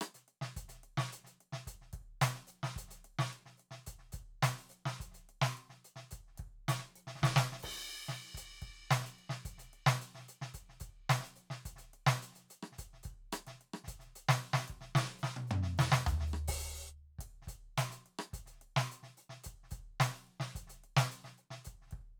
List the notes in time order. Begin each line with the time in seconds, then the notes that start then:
0.01 closed hi-hat, cross-stick
0.14 closed hi-hat, snare
0.28 closed hi-hat
0.41 snare
0.56 closed hi-hat, kick
0.62 kick
0.68 closed hi-hat, snare
0.72 snare
0.83 closed hi-hat
0.97 snare
1.12 closed hi-hat
1.24 closed hi-hat, snare
1.28 snare
1.41 closed hi-hat
1.53 snare
1.67 closed hi-hat, kick
1.81 snare
1.91 kick, snare, closed hi-hat
2.02 kick
2.21 closed hi-hat, snare
2.35 snare, open hi-hat
2.47 hi-hat pedal
2.63 snare
2.76 closed hi-hat, kick
2.82 kick
2.88 closed hi-hat, snare
2.93 snare
3.04 closed hi-hat
3.19 snare
3.33 closed hi-hat
3.46 snare
3.57 closed hi-hat, hi-hat pedal
3.71 snare
3.86 closed hi-hat, kick
3.99 snare
4.06 snare
4.09 closed hi-hat, snare
4.14 kick
4.20 kick
4.22 kick
4.42 closed hi-hat, snare
4.55 open hi-hat, snare
4.69 closed hi-hat, hi-hat pedal
4.86 snare
4.99 closed hi-hat, kick, snare
5.11 closed hi-hat, snare
5.16 snare
5.21 snare
5.29 closed hi-hat
5.42 snare
5.57 closed hi-hat
5.70 snare
5.84 closed hi-hat
5.96 snare
6.11 closed hi-hat, kick
6.27 snare
6.34 snare, closed hi-hat
6.39 kick
6.48 kick
6.68 closed hi-hat, snare
6.79 snare
6.96 hi-hat pedal, open hi-hat
7.07 snare
7.16 snare
7.22 kick, snare
7.36 snare
7.52 snare
7.59 hi-hat pedal, crash
7.64 kick
8.08 snare
8.34 closed hi-hat, kick
8.40 kick, snare
8.62 kick, closed hi-hat
8.70 kick
8.91 closed hi-hat, snare
9.01 snare
9.06 closed hi-hat
9.18 closed hi-hat
9.29 snare
9.45 closed hi-hat, kick
9.51 kick
9.58 closed hi-hat, snare
9.64 snare
9.73 closed hi-hat
9.86 snare
9.94 snare
10.01 closed hi-hat
10.15 snare
10.19 snare
10.28 closed hi-hat
10.41 snare
10.54 closed hi-hat, kick
10.69 snare
10.75 snare
10.80 closed hi-hat, kick
10.89 kick
11.09 closed hi-hat, snare
11.20 open hi-hat, snare
11.36 closed hi-hat, hi-hat pedal
11.50 snare
11.63 closed hi-hat, kick, snare
11.71 kick
11.76 closed hi-hat, snare
11.81 snare
11.86 snare
11.93 closed hi-hat
12.06 snare
12.15 snare
12.22 closed hi-hat
12.32 closed hi-hat, snare
12.37 snare
12.48 closed hi-hat, hi-hat pedal
12.63 cross-stick
12.72 snare
12.78 closed hi-hat, kick
12.93 snare
12.99 snare
13.03 closed hi-hat, kick
13.11 kick
13.14 kick
13.32 closed hi-hat, cross-stick
13.47 snare, closed hi-hat
13.61 closed hi-hat
13.73 cross-stick
13.84 kick, snare
13.88 closed hi-hat
13.99 closed hi-hat, snare
14.05 snare
14.15 closed hi-hat
14.29 snare
14.43 closed hi-hat
14.53 snare
14.58 snare
14.65 closed hi-hat, hi-hat pedal
14.70 kick
14.75 kick
14.81 snare
14.94 snare, high tom
15.19 hi-hat pedal
15.23 snare
15.36 open hi-hat, high tom
15.47 hi-hat pedal, mid tom
15.63 snare
15.78 snare, hi-hat pedal
15.92 snare
16.06 hi-hat pedal, floor tom
16.20 snare
16.27 hi-hat pedal
16.33 cross-stick
16.48 open hi-hat, kick
17.19 kick, closed hi-hat
17.24 kick
17.42 snare
17.47 closed hi-hat, kick
17.56 kick
17.78 closed hi-hat, snare
17.90 closed hi-hat, snare
18.06 closed hi-hat
18.19 cross-stick
18.30 closed hi-hat, kick, snare
18.39 kick
18.46 closed hi-hat, snare
18.50 snare
18.55 snare
18.61 closed hi-hat
18.76 snare
18.91 closed hi-hat
19.03 snare
19.17 open hi-hat
19.29 snare
19.44 closed hi-hat, kick
19.63 snare
19.69 closed hi-hat, kick, snare, hi-hat pedal
19.81 kick
20.00 closed hi-hat, snare
20.11 open hi-hat, snare
20.27 closed hi-hat
20.40 snare
20.52 closed hi-hat, kick, snare
20.61 kick
20.67 closed hi-hat, snare
20.72 snare
20.84 closed hi-hat
20.97 snare
21.05 snare
21.11 closed hi-hat
21.24 snare
21.38 open hi-hat, hi-hat pedal
21.50 snare
21.65 closed hi-hat, kick
21.82 snare
21.87 snare, closed hi-hat
21.92 kick
21.98 kick
22.01 kick